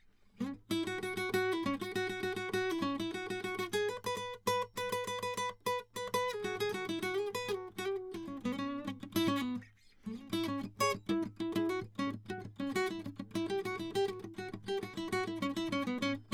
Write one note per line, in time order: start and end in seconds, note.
0.42 0.58 C#4
0.72 0.86 E4
0.89 1.00 F#4
1.04 1.16 F#4
1.19 1.31 F#4
1.35 1.54 F#4
1.54 1.67 E4
1.67 1.80 C#4
1.83 1.94 F#4
1.97 2.06 F#4
2.07 2.25 F#4
2.25 2.35 F#4
2.38 2.52 F#4
2.55 2.72 F#4
2.73 2.89 E4
2.83 3.04 C#4
3.01 3.14 E4
3.16 3.29 F#4
3.32 3.43 F#4
3.46 3.58 F#4
3.60 3.71 F#4
3.75 3.90 G#4
3.90 4.01 B4
4.05 4.16 B4
4.16 4.40 B4
4.48 4.69 B4
4.79 4.94 B4
4.94 5.08 B4
5.09 5.22 B4
5.24 5.37 B4
5.39 5.57 B4
5.67 5.85 B4
5.97 6.11 B4
6.15 6.30 B4
6.30 6.58 G#4
6.46 6.61 F#4
6.62 6.77 G#4
6.76 6.88 F#4
6.91 7.02 E4
7.04 7.15 F#4
7.16 7.33 G#4
7.36 7.58 B4
7.50 7.73 F#4
7.80 8.16 G4
8.16 8.32 E4
8.29 8.42 C#4
8.47 8.58 B3
8.61 8.70 C#4
9.17 9.34 E4
9.29 9.43 C#4
9.43 9.61 B3
10.08 10.16 A3
10.34 10.52 E4
10.50 10.64 C#4
10.82 10.97 G#4
10.82 10.97 C#5
11.10 11.32 E4
11.41 11.55 E4
11.57 11.70 E4
11.57 11.75 G#4
11.71 11.85 F#4
12.00 12.14 C#4
12.31 12.45 F#4
12.61 12.76 C#4
12.77 12.88 F#4
12.88 13.06 E4
13.37 13.49 E4
13.51 13.64 G4
13.67 13.78 F#4
13.81 13.93 E4
13.96 14.08 G4
14.10 14.21 F#4
14.21 14.29 F4
14.40 14.51 F#4
14.70 14.81 G4
14.84 14.96 F#4
14.99 15.11 E4
15.14 15.27 F#4
15.29 15.43 E4
15.44 15.56 C#4
15.58 15.73 E4
15.74 15.87 C#4
15.89 16.01 B3
16.04 16.21 C#4